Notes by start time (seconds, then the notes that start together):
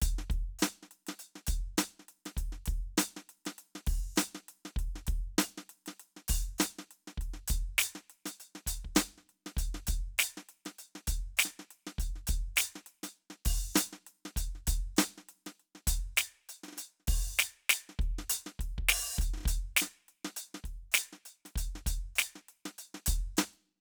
0.01 closed hi-hat, kick
0.18 snare
0.30 kick, open hi-hat
0.59 snare, hi-hat pedal
0.63 closed hi-hat
0.83 snare
0.91 closed hi-hat
1.07 snare, closed hi-hat
1.19 closed hi-hat
1.35 snare
1.47 closed hi-hat, kick
1.77 closed hi-hat, snare, hi-hat pedal
1.99 snare
2.08 closed hi-hat
2.25 snare, closed hi-hat
2.37 kick, closed hi-hat
2.52 snare
2.66 kick, open hi-hat
2.97 closed hi-hat, snare, hi-hat pedal
3.16 snare
3.29 closed hi-hat
3.45 snare, closed hi-hat
3.58 closed hi-hat
3.75 snare
3.87 kick, open hi-hat
4.16 closed hi-hat, snare, hi-hat pedal
4.35 snare
4.48 closed hi-hat
4.65 snare, closed hi-hat
4.76 kick, closed hi-hat
4.96 snare
5.07 kick, closed hi-hat
5.38 open hi-hat, snare, hi-hat pedal
5.58 snare
5.69 closed hi-hat
5.86 snare, closed hi-hat
6.00 closed hi-hat
6.16 snare
6.28 open hi-hat, kick
6.58 closed hi-hat, snare, hi-hat pedal
6.79 snare
6.91 closed hi-hat
7.07 snare, closed hi-hat
7.17 kick, closed hi-hat
7.33 snare
7.48 open hi-hat, kick
7.78 closed hi-hat, snare, hi-hat pedal
7.95 snare
8.10 closed hi-hat
8.26 closed hi-hat, snare
8.40 closed hi-hat
8.55 snare
8.67 closed hi-hat, kick
8.85 kick
8.95 closed hi-hat, snare, hi-hat pedal
9.18 snare
9.29 closed hi-hat
9.46 snare, closed hi-hat
9.57 closed hi-hat, kick
9.74 snare
9.87 open hi-hat, kick
10.18 closed hi-hat, snare, hi-hat pedal
10.37 snare
10.49 closed hi-hat
10.65 snare, closed hi-hat
10.78 closed hi-hat
10.95 snare
11.07 closed hi-hat, kick
11.37 closed hi-hat, snare, hi-hat pedal
11.45 snare
11.59 snare
11.71 closed hi-hat
11.87 snare
11.98 closed hi-hat, kick
12.16 snare
12.27 closed hi-hat, kick
12.56 closed hi-hat, snare, hi-hat pedal
12.75 snare
12.86 closed hi-hat
13.03 closed hi-hat, snare
13.17 closed hi-hat
13.30 snare
13.45 open hi-hat, kick
13.75 closed hi-hat, snare, hi-hat pedal
13.93 snare
14.06 closed hi-hat
14.25 snare
14.36 closed hi-hat, kick
14.55 snare
14.67 open hi-hat, kick
14.96 closed hi-hat, snare, hi-hat pedal
15.18 snare
15.29 closed hi-hat
15.46 snare, closed hi-hat
15.60 closed hi-hat
15.75 snare
15.87 closed hi-hat, kick
16.17 closed hi-hat, snare, hi-hat pedal
16.49 closed hi-hat
16.63 snare, closed hi-hat
16.68 snare
16.73 snare
16.77 closed hi-hat, snare
17.00 snare
17.07 open hi-hat, kick
17.39 closed hi-hat, snare, hi-hat pedal
17.69 closed hi-hat, snare
17.89 snare
17.99 kick, closed hi-hat
18.18 snare
18.30 closed hi-hat
18.46 snare
18.59 kick, closed hi-hat
18.78 kick
18.89 open hi-hat, snare
19.16 kick, hi-hat pedal
19.21 closed hi-hat
19.34 snare
19.37 snare
19.40 snare
19.43 kick, snare
19.47 closed hi-hat, snare
19.77 closed hi-hat, snare
19.82 snare
20.08 closed hi-hat
20.25 snare
20.36 closed hi-hat
20.54 snare
20.64 kick, closed hi-hat
20.92 closed hi-hat, snare, hi-hat pedal
21.13 snare
21.25 closed hi-hat
21.45 snare, closed hi-hat
21.56 closed hi-hat, kick
21.75 snare
21.86 open hi-hat, kick
22.15 closed hi-hat, snare, hi-hat pedal
22.35 snare
22.48 closed hi-hat
22.65 snare, closed hi-hat
22.78 closed hi-hat
22.94 snare
23.06 closed hi-hat, kick
23.37 closed hi-hat, snare, hi-hat pedal
23.53 closed hi-hat